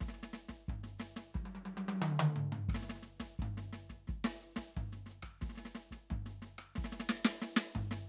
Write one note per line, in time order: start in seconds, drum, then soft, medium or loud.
0.01 kick soft
0.01 snare soft
0.09 snare soft
0.14 snare soft
0.23 snare soft
0.33 snare soft
0.33 hi-hat pedal medium
0.49 kick soft
0.49 snare soft
0.69 kick soft
0.69 floor tom medium
0.84 snare soft
0.99 snare medium
0.99 hi-hat pedal medium
1.16 snare medium
1.35 kick soft
1.35 high tom soft
1.46 high tom medium
1.55 high tom medium
1.66 high tom medium
1.77 high tom medium
1.89 high tom loud
2.02 mid tom loud
2.20 mid tom loud
2.36 floor tom medium
2.52 floor tom medium
2.69 kick medium
2.69 cross-stick medium
2.75 snare medium
2.79 snare soft
2.83 snare soft
2.90 snare medium
2.96 snare soft
3.02 snare soft
3.02 hi-hat pedal soft
3.20 kick soft
3.20 snare medium
3.39 kick soft
3.39 floor tom medium
3.57 snare soft
3.73 snare soft
3.73 hi-hat pedal medium
3.90 kick soft
3.90 snare soft
4.08 kick soft
4.08 snare soft
4.24 snare medium
4.40 snare soft
4.40 hi-hat pedal medium
4.56 kick soft
4.56 snare medium
4.77 kick soft
4.77 floor tom medium
4.93 snare soft
5.06 snare soft
5.06 hi-hat pedal medium
5.23 kick soft
5.23 cross-stick medium
5.41 kick soft
5.41 snare soft
5.50 snare soft
5.55 snare soft
5.58 snare soft
5.75 snare medium
5.75 hi-hat pedal medium
5.91 kick soft
5.91 snare soft
6.11 kick soft
6.11 floor tom medium
6.26 snare soft
6.42 snare soft
6.42 hi-hat pedal soft
6.58 cross-stick medium
6.76 kick soft
6.76 snare medium
6.84 snare medium
6.92 snare soft
7.00 snare medium
7.09 snare medium
7.25 snare loud
7.42 snare medium
7.57 snare loud
7.75 kick soft
7.75 floor tom medium
7.91 snare medium